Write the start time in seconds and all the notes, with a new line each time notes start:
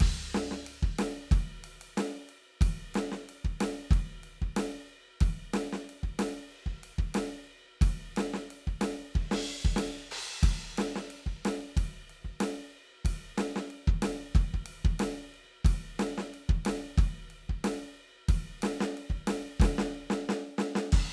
0.01 kick, ride, crash
0.35 snare
0.52 snare
0.67 ride
0.83 kick
0.99 snare, ride
1.32 kick, ride
1.65 ride
1.82 ride
1.98 snare, ride
2.30 ride
2.62 kick, ride
2.95 snare, ride
3.13 snare
3.30 ride
3.45 kick
3.61 snare, ride
3.91 kick, ride
4.24 ride
4.42 kick
4.57 snare, ride
4.90 ride
5.21 kick, ride
5.54 snare, ride
5.73 snare
5.90 ride
6.04 kick
6.20 snare, ride
6.51 ride
6.67 kick
6.84 ride
6.99 kick
7.15 snare, ride
7.82 kick, ride
8.17 snare, ride
8.34 snare
8.51 ride
8.68 kick
8.82 snare, ride
9.15 kick, ride
9.32 snare, ride
9.65 kick
9.77 snare, ride
10.12 crash
10.43 kick, ride
10.78 snare, ride
10.96 snare
11.11 ride
11.27 kick
11.46 snare, ride
11.77 kick, ride
12.10 ride
12.25 kick
12.41 snare, ride
12.74 ride
13.05 kick, ride
13.38 snare, ride
13.57 snare
13.71 ride
13.88 kick
14.03 snare, ride
14.36 kick, ride
14.54 kick
14.67 ride
14.85 kick
15.00 snare, ride
15.35 ride
15.65 kick, ride
16.00 snare, ride
16.18 snare
16.35 ride
16.50 kick
16.66 snare, ride
16.98 kick, ride
17.31 ride
17.50 kick
17.65 snare, ride
18.29 kick, ride
18.63 snare, ride
18.81 snare
18.98 ride
19.11 kick
19.28 snare, ride
19.60 kick, snare, ride
19.79 snare
20.11 snare
20.30 snare
20.59 snare
20.76 snare
20.93 kick, crash